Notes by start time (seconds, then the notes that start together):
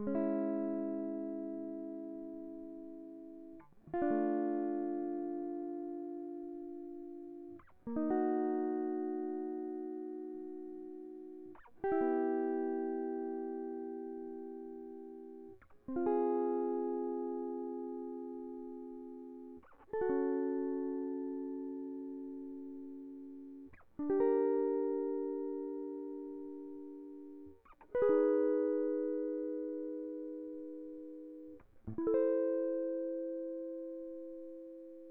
0.00 G#3
0.08 C#4
0.16 E4
3.95 F4
4.03 D4
4.12 A3
7.88 A#3
7.97 D#4
8.11 F#4
11.85 G4
11.93 E4
12.03 B3
15.90 C4
15.97 F4
16.07 G#4
19.94 A4
20.02 F#4
20.10 C#4
24.00 D4
24.11 G4
24.21 A#4
27.96 B4
28.03 G#4
28.10 D#4
31.99 E4
32.08 A4
32.15 C5